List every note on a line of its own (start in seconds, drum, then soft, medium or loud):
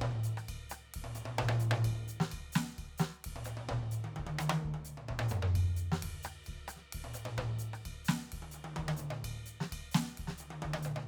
0.01 kick soft
0.01 mid tom loud
0.11 mid tom soft
0.24 hi-hat pedal medium
0.38 cross-stick medium
0.49 kick soft
0.49 ride bell medium
0.55 kick soft
0.70 cross-stick medium
0.70 hi-hat pedal medium
0.94 kick soft
0.94 ride medium
1.04 mid tom medium
1.15 hi-hat pedal medium
1.15 mid tom medium
1.26 mid tom medium
1.39 kick soft
1.39 mid tom loud
1.49 mid tom loud
1.60 hi-hat pedal medium
1.60 mid tom soft
1.72 mid tom loud
1.85 kick soft
1.85 ride bell medium
2.08 hi-hat pedal medium
2.21 snare medium
2.32 kick soft
2.32 ride bell medium
2.53 snare loud
2.53 hi-hat pedal medium
2.79 kick soft
2.79 ride bell medium
2.85 kick soft
2.98 snare medium
2.98 hi-hat pedal medium
3.25 kick soft
3.25 ride medium
3.32 kick soft
3.32 mid tom medium
3.45 hi-hat pedal medium
3.45 mid tom medium
3.57 mid tom medium
3.69 kick soft
3.69 mid tom loud
3.77 kick soft
3.92 hi-hat pedal medium
3.92 high tom soft
4.05 high tom medium
4.17 kick soft
4.17 high tom medium
4.26 kick soft
4.26 high tom medium
4.39 hi-hat pedal medium
4.39 high tom loud
4.50 high tom loud
4.65 kick soft
4.71 kick soft
4.71 high tom medium
4.85 hi-hat pedal medium
4.85 mid tom soft
4.98 mid tom medium
5.09 kick soft
5.09 mid tom medium
5.19 mid tom loud
5.29 floor tom loud
5.29 hi-hat pedal medium
5.43 floor tom loud
5.55 kick medium
5.55 ride bell medium
5.77 hi-hat pedal medium
5.77 ride soft
5.92 snare medium
6.03 kick soft
6.03 ride loud
6.10 kick soft
6.23 cross-stick medium
6.23 hi-hat pedal medium
6.44 hi-hat pedal soft
6.44 ride bell medium
6.49 kick soft
6.68 cross-stick medium
6.68 hi-hat pedal medium
6.76 snare soft
6.93 kick soft
6.93 ride medium
7.05 mid tom medium
7.14 hi-hat pedal medium
7.14 mid tom soft
7.26 mid tom medium
7.38 kick soft
7.38 mid tom loud
7.59 hi-hat pedal medium
7.74 cross-stick medium
7.86 kick soft
7.86 ride bell medium
8.05 snare loud
8.05 hi-hat pedal medium
8.32 kick soft
8.32 ride medium
8.43 high tom medium
8.52 hi-hat pedal medium
8.52 high tom soft
8.77 kick soft
8.77 high tom loud
8.85 kick soft
8.85 high tom loud
8.97 hi-hat pedal medium
8.97 mid tom soft
9.11 mid tom medium
9.24 kick soft
9.24 ride bell medium
9.30 kick soft
9.46 hi-hat pedal medium
9.46 ride soft
9.61 snare medium
9.73 kick soft
9.73 ride bell medium
9.92 snare loud
9.92 hi-hat pedal medium
10.18 kick soft
10.18 ride medium
10.28 snare medium
10.38 hi-hat pedal medium
10.38 high tom soft
10.62 kick soft
10.62 high tom loud
10.74 high tom loud
10.83 hi-hat pedal medium
10.83 mid tom medium
10.97 mid tom medium